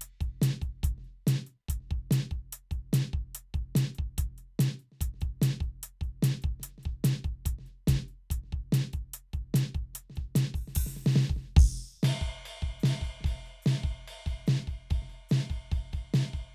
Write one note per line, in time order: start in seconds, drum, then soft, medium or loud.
0.01 closed hi-hat loud
0.21 kick medium
0.21 closed hi-hat soft
0.42 closed hi-hat loud
0.42 snare loud
0.62 kick soft
0.62 closed hi-hat soft
0.83 closed hi-hat loud
0.83 kick medium
0.98 snare soft
1.04 closed hi-hat soft
1.27 closed hi-hat loud
1.27 snare loud
1.47 closed hi-hat soft
1.69 closed hi-hat loud
1.69 kick medium
1.81 snare soft
1.91 kick medium
1.91 closed hi-hat soft
2.11 closed hi-hat loud
2.11 snare loud
2.31 kick soft
2.31 closed hi-hat soft
2.53 closed hi-hat loud
2.71 closed hi-hat soft
2.71 kick soft
2.93 closed hi-hat loud
2.93 snare loud
3.13 kick medium
3.35 closed hi-hat loud
3.54 kick medium
3.54 closed hi-hat soft
3.75 closed hi-hat loud
3.75 snare loud
3.95 closed hi-hat soft
3.95 kick medium
4.18 closed hi-hat loud
4.18 kick medium
4.38 closed hi-hat soft
4.59 closed hi-hat loud
4.59 snare loud
4.79 closed hi-hat soft
4.92 snare soft
5.01 closed hi-hat loud
5.01 kick medium
5.14 snare soft
5.21 kick medium
5.21 closed hi-hat soft
5.42 closed hi-hat loud
5.42 snare loud
5.60 kick medium
5.60 closed hi-hat soft
5.83 closed hi-hat loud
6.01 kick soft
6.01 closed hi-hat soft
6.23 closed hi-hat loud
6.23 snare loud
6.42 kick medium
6.42 closed hi-hat soft
6.60 closed hi-hat loud
6.60 snare soft
6.78 snare soft
6.83 kick soft
6.83 closed hi-hat soft
7.04 closed hi-hat loud
7.04 snare loud
7.24 kick medium
7.24 closed hi-hat soft
7.46 closed hi-hat loud
7.46 kick medium
7.59 snare soft
7.66 closed hi-hat soft
7.87 closed hi-hat loud
7.87 kick medium
7.87 snare loud
8.08 closed hi-hat soft
8.30 closed hi-hat loud
8.30 kick medium
8.44 snare soft
8.52 kick soft
8.52 closed hi-hat soft
8.72 closed hi-hat loud
8.72 snare loud
8.93 kick soft
8.93 closed hi-hat soft
9.14 closed hi-hat loud
9.33 kick soft
9.33 closed hi-hat soft
9.54 closed hi-hat loud
9.54 snare loud
9.75 kick medium
9.75 closed hi-hat soft
9.94 closed hi-hat loud
9.94 snare soft
10.10 snare soft
10.16 kick soft
10.16 closed hi-hat soft
10.36 closed hi-hat loud
10.36 snare loud
10.54 kick soft
10.54 open hi-hat soft
10.68 snare soft
10.75 open hi-hat loud
10.75 kick medium
10.86 snare medium
10.97 snare soft
11.06 snare loud
11.16 snare loud
11.30 kick medium
11.36 snare soft
11.57 kick loud
11.57 crash loud
12.03 snare loud
12.03 hi-hat pedal medium
12.03 ride loud
12.21 kick medium
12.21 ride soft
12.45 ride medium
12.62 kick medium
12.80 snare loud
12.80 hi-hat pedal medium
12.85 ride loud
13.01 kick soft
13.01 ride soft
13.21 kick medium
13.21 snare soft
13.26 ride bell medium
13.35 snare soft
13.39 snare soft
13.46 ride soft
13.62 snare loud
13.62 hi-hat pedal medium
13.67 ride bell medium
13.84 kick medium
13.84 ride soft
14.08 ride medium
14.26 kick medium
14.26 snare soft
14.26 ride soft
14.47 snare loud
14.47 hi-hat pedal medium
14.47 ride bell soft
14.67 kick soft
14.67 ride soft
14.90 kick medium
14.90 ride bell soft
15.02 snare soft
15.10 ride soft
15.29 snare loud
15.29 hi-hat pedal medium
15.29 ride bell medium
15.50 kick soft
15.50 ride soft
15.72 kick medium
15.72 ride bell soft
15.93 kick soft
15.93 ride soft
16.14 snare loud
16.14 hi-hat pedal medium
16.14 ride bell medium
16.33 kick soft
16.33 ride soft